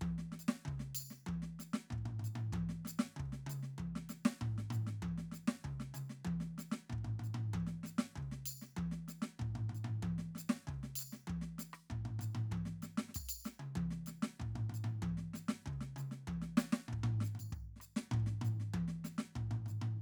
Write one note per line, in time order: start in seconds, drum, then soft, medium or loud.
0.01 kick soft
0.01 high tom loud
0.18 snare soft
0.32 snare soft
0.39 percussion medium
0.48 snare medium
0.65 kick soft
0.65 mid tom medium
0.79 snare soft
0.95 percussion medium
0.99 percussion soft
1.10 snare soft
1.26 kick soft
1.26 high tom medium
1.33 kick soft
1.42 snare soft
1.59 snare soft
1.59 percussion medium
1.73 snare medium
1.90 kick soft
1.90 floor tom medium
1.98 kick soft
2.05 floor tom medium
2.19 floor tom medium
2.24 percussion soft
2.35 floor tom medium
2.52 kick soft
2.52 high tom loud
2.59 kick soft
2.69 snare soft
2.85 snare soft
2.85 percussion medium
2.99 snare medium
3.16 kick soft
3.16 mid tom medium
3.25 kick soft
3.32 snare soft
3.46 mid tom medium
3.46 percussion medium
3.63 snare soft
3.78 kick soft
3.78 high tom medium
3.95 snare soft
4.09 snare soft
4.09 percussion medium
4.25 snare medium
4.41 kick soft
4.41 floor tom medium
4.58 snare soft
4.70 floor tom medium
4.70 percussion soft
4.87 snare soft
5.02 kick soft
5.02 high tom medium
5.08 kick soft
5.18 snare soft
5.32 snare soft
5.32 percussion soft
5.48 snare medium
5.64 kick soft
5.64 mid tom medium
5.80 snare soft
5.94 mid tom medium
5.94 percussion medium
6.10 snare soft
6.25 kick soft
6.25 high tom loud
6.40 snare soft
6.58 snare soft
6.58 percussion medium
6.71 snare medium
6.90 kick soft
6.90 floor tom medium
6.98 kick soft
7.04 floor tom medium
7.19 floor tom medium
7.24 percussion soft
7.34 floor tom medium
7.53 kick soft
7.53 high tom medium
7.60 kick soft
7.67 snare soft
7.83 snare soft
7.83 percussion soft
7.98 snare medium
8.15 kick soft
8.15 mid tom medium
8.22 kick soft
8.32 snare soft
8.46 percussion medium
8.48 percussion soft
8.62 snare soft
8.76 kick soft
8.76 high tom medium
8.91 snare soft
9.08 snare soft
9.08 percussion medium
9.22 snare medium
9.39 kick soft
9.39 floor tom medium
9.55 floor tom medium
9.69 floor tom medium
9.75 percussion soft
9.84 floor tom medium
10.02 kick soft
10.02 high tom loud
10.18 snare soft
10.35 snare soft
10.35 percussion medium
10.49 snare medium
10.67 kick soft
10.67 mid tom medium
10.74 kick soft
10.83 snare soft
10.95 percussion medium
10.99 percussion medium
11.12 snare soft
11.27 kick soft
11.27 high tom medium
11.41 snare soft
11.58 snare soft
11.58 percussion medium
11.73 cross-stick medium
11.90 kick soft
11.90 floor tom medium
12.05 floor tom medium
12.19 floor tom medium
12.19 percussion medium
12.35 floor tom medium
12.51 kick soft
12.51 high tom medium
12.57 kick soft
12.65 snare soft
12.82 snare soft
12.82 percussion soft
12.97 snare medium
13.09 snare soft
13.14 kick soft
13.14 percussion medium
13.29 percussion medium
13.45 snare soft
13.45 percussion soft
13.59 mid tom medium
13.75 kick soft
13.75 high tom loud
13.91 snare soft
14.06 snare soft
14.06 percussion medium
14.22 snare medium
14.40 kick soft
14.40 floor tom medium
14.55 floor tom medium
14.69 floor tom medium
14.74 percussion soft
14.84 floor tom medium
15.02 kick soft
15.02 high tom loud
15.09 kick soft
15.17 snare soft
15.33 snare soft
15.33 percussion medium
15.48 snare medium
15.66 kick soft
15.66 mid tom medium
15.73 kick soft
15.81 snare soft
15.96 mid tom medium
15.96 percussion soft
16.11 snare soft
16.27 kick soft
16.27 high tom medium
16.33 kick soft
16.42 snare soft
16.57 snare loud
16.57 percussion medium
16.72 snare medium
16.88 floor tom medium
16.93 kick soft
17.03 floor tom loud
17.20 snare soft
17.20 percussion soft
17.35 floor tom medium
17.39 percussion soft
17.52 kick soft
17.76 snare soft
17.80 cross-stick soft
17.80 percussion soft
17.96 snare medium
18.11 kick soft
18.11 floor tom loud
18.19 kick soft
18.26 snare soft
18.41 floor tom loud
18.41 percussion soft
18.60 snare soft
18.74 kick soft
18.74 high tom loud
18.80 kick soft
18.88 snare soft
19.04 snare soft
19.04 percussion soft
19.18 snare medium
19.35 kick soft
19.35 floor tom medium
19.51 floor tom medium
19.66 floor tom medium
19.66 percussion soft
19.82 floor tom medium